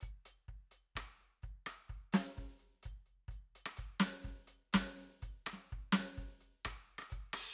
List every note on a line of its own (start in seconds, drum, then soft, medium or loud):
0.00 open hi-hat medium
0.00 kick soft
0.00 hi-hat pedal soft
0.25 closed hi-hat medium
0.48 kick soft
0.48 closed hi-hat soft
0.71 closed hi-hat soft
0.95 closed hi-hat medium
0.95 kick soft
0.95 cross-stick medium
1.21 closed hi-hat soft
1.42 closed hi-hat soft
1.42 kick soft
1.66 open hi-hat medium
1.66 cross-stick medium
1.89 closed hi-hat soft
1.89 kick soft
2.13 closed hi-hat medium
2.13 snare loud
2.36 closed hi-hat soft
2.36 kick soft
2.36 snare soft
2.44 snare soft
2.47 snare soft
2.59 closed hi-hat soft
2.83 closed hi-hat medium
2.83 kick soft
3.06 closed hi-hat soft
3.28 closed hi-hat soft
3.28 kick soft
3.55 closed hi-hat soft
3.66 cross-stick medium
3.77 closed hi-hat medium
3.77 kick soft
4.00 closed hi-hat medium
4.00 snare medium
4.05 snare soft
4.23 closed hi-hat soft
4.23 kick soft
4.23 snare soft
4.30 snare soft
4.47 closed hi-hat soft
4.73 closed hi-hat medium
4.73 kick soft
4.73 snare loud
4.78 cross-stick soft
4.98 closed hi-hat soft
4.98 snare soft
5.04 snare soft
5.22 closed hi-hat soft
5.22 kick soft
5.46 closed hi-hat medium
5.46 cross-stick medium
5.53 snare soft
5.67 closed hi-hat soft
5.67 hi-hat pedal soft
5.72 kick soft
5.92 closed hi-hat medium
5.92 snare medium
5.99 snare soft
6.16 closed hi-hat soft
6.16 kick soft
6.20 snare soft
6.40 closed hi-hat soft
6.65 open hi-hat medium
6.65 kick soft
6.65 cross-stick medium
6.65 hi-hat pedal soft
6.90 open hi-hat soft
6.98 cross-stick medium
7.02 cross-stick soft
7.09 open hi-hat medium
7.09 kick soft
7.09 hi-hat pedal soft
7.33 cross-stick medium
7.33 crash medium